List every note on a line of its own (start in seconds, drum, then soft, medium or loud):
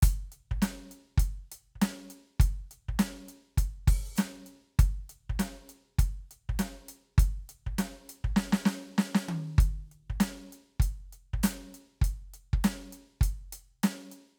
0.02 closed hi-hat loud
0.02 kick loud
0.32 closed hi-hat medium
0.51 kick medium
0.62 snare loud
0.62 closed hi-hat loud
0.91 closed hi-hat medium
1.18 kick loud
1.18 closed hi-hat loud
1.52 closed hi-hat loud
1.75 kick soft
1.82 snare loud
1.82 closed hi-hat loud
2.10 closed hi-hat medium
2.40 kick loud
2.40 closed hi-hat loud
2.71 closed hi-hat medium
2.89 kick medium
2.99 snare loud
2.99 closed hi-hat loud
3.29 closed hi-hat medium
3.58 kick medium
3.58 closed hi-hat loud
3.88 kick loud
3.88 open hi-hat loud
4.16 snare loud
4.16 closed hi-hat loud
4.16 hi-hat pedal loud
4.46 closed hi-hat medium
4.79 kick loud
4.79 closed hi-hat loud
5.09 closed hi-hat medium
5.29 kick medium
5.39 snare loud
5.39 closed hi-hat loud
5.69 closed hi-hat medium
5.99 kick loud
5.99 closed hi-hat loud
6.31 closed hi-hat medium
6.49 kick medium
6.59 snare loud
6.59 closed hi-hat loud
6.88 closed hi-hat medium
7.18 kick loud
7.18 closed hi-hat loud
7.49 closed hi-hat medium
7.66 kick medium
7.78 snare loud
7.78 closed hi-hat loud
8.09 closed hi-hat medium
8.24 kick medium
8.36 snare loud
8.53 snare loud
8.65 snare loud
8.98 snare loud
9.15 snare loud
9.29 high tom loud
9.58 kick loud
9.58 closed hi-hat loud
9.92 closed hi-hat soft
10.10 kick medium
10.20 snare loud
10.20 closed hi-hat loud
10.52 closed hi-hat medium
10.80 kick loud
10.80 closed hi-hat loud
11.13 closed hi-hat medium
11.33 kick medium
11.43 closed hi-hat loud
11.43 snare loud
11.74 closed hi-hat medium
12.02 kick medium
12.02 closed hi-hat loud
12.34 closed hi-hat medium
12.53 kick medium
12.64 snare loud
12.64 closed hi-hat loud
12.93 closed hi-hat medium
13.21 kick loud
13.21 closed hi-hat loud
13.53 closed hi-hat loud
13.83 snare loud
13.83 closed hi-hat loud
14.12 closed hi-hat medium